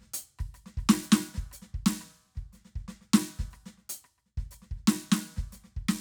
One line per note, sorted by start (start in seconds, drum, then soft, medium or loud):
0.01 snare soft
0.15 closed hi-hat loud
0.40 kick soft
0.40 cross-stick soft
0.55 cross-stick soft
0.55 snare soft
0.55 hi-hat pedal soft
0.67 snare soft
0.78 kick soft
0.78 cross-stick soft
0.78 snare soft
0.90 snare loud
0.94 cross-stick medium
1.02 snare soft
1.02 hi-hat pedal medium
1.13 snare loud
1.17 cross-stick medium
1.35 kick soft
1.35 snare soft
1.52 cross-stick soft
1.52 snare soft
1.52 hi-hat pedal medium
1.63 snare soft
1.74 kick soft
1.74 snare soft
1.87 snare loud
1.91 cross-stick soft
2.02 cross-stick soft
2.02 snare soft
2.26 snare soft
2.36 kick soft
2.36 snare soft
2.53 snare soft
2.53 hi-hat pedal soft
2.66 snare soft
2.76 kick soft
2.76 snare soft
2.79 snare soft
2.89 snare soft
3.02 snare soft
3.14 snare loud
3.19 cross-stick medium
3.40 kick soft
3.40 snare soft
3.52 cross-stick soft
3.52 snare soft
3.52 hi-hat pedal soft
3.67 snare soft
3.79 snare soft
3.90 closed hi-hat medium
4.05 cross-stick soft
4.19 cross-stick soft
4.27 snare soft
4.38 kick soft
4.38 snare soft
4.52 cross-stick soft
4.52 snare soft
4.52 hi-hat pedal medium
4.72 kick soft
4.78 snare soft
4.88 snare loud
4.93 cross-stick soft
5.02 snare soft
5.13 snare loud
5.18 cross-stick soft
5.38 kick soft
5.38 snare soft
5.53 snare soft
5.53 hi-hat pedal medium
5.65 snare soft
5.77 kick soft
5.77 snare soft
5.90 snare medium